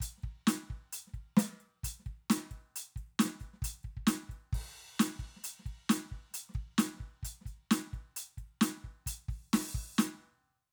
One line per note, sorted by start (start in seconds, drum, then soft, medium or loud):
0.01 closed hi-hat loud
0.01 kick soft
0.18 snare soft
0.23 kick soft
0.23 closed hi-hat soft
0.48 closed hi-hat loud
0.48 snare loud
0.71 kick soft
0.93 closed hi-hat loud
1.08 snare soft
1.14 kick soft
1.14 closed hi-hat soft
1.37 closed hi-hat loud
1.37 snare loud
1.61 closed hi-hat soft
1.84 closed hi-hat loud
1.84 kick soft
2.00 snare soft
2.07 kick soft
2.07 closed hi-hat soft
2.31 closed hi-hat loud
2.31 snare loud
2.38 snare soft
2.52 kick soft
2.52 closed hi-hat soft
2.77 closed hi-hat loud
2.97 kick soft
2.97 closed hi-hat soft
3.20 closed hi-hat loud
3.20 snare loud
3.26 snare medium
3.41 closed hi-hat soft
3.41 kick soft
3.54 snare soft
3.63 closed hi-hat loud
3.63 kick medium
3.84 kick soft
3.84 closed hi-hat soft
3.97 kick soft
4.08 closed hi-hat loud
4.08 snare loud
4.30 kick soft
4.30 closed hi-hat soft
4.53 kick medium
4.53 crash medium
4.73 closed hi-hat soft
5.00 closed hi-hat loud
5.00 snare loud
5.20 kick soft
5.20 closed hi-hat soft
5.37 snare soft
5.45 closed hi-hat loud
5.60 snare soft
5.66 kick soft
5.66 closed hi-hat soft
5.90 closed hi-hat loud
5.90 snare loud
6.12 kick soft
6.31 closed hi-hat loud
6.31 snare soft
6.50 snare soft
6.55 kick medium
6.55 closed hi-hat soft
6.79 closed hi-hat loud
6.79 snare loud
6.97 snare soft
7.01 kick soft
7.23 closed hi-hat loud
7.23 kick soft
7.42 snare soft
7.46 closed hi-hat soft
7.46 kick soft
7.72 closed hi-hat loud
7.72 snare loud
7.94 kick soft
7.94 closed hi-hat soft
8.17 closed hi-hat loud
8.38 kick soft
8.38 closed hi-hat soft
8.62 closed hi-hat loud
8.62 snare loud
8.85 kick soft
9.07 closed hi-hat loud
9.07 kick soft
9.29 open hi-hat soft
9.29 kick medium
9.54 open hi-hat loud
9.54 kick soft
9.54 snare loud
9.75 kick medium
9.75 open hi-hat soft
9.99 open hi-hat loud
9.99 snare loud
9.99 hi-hat pedal medium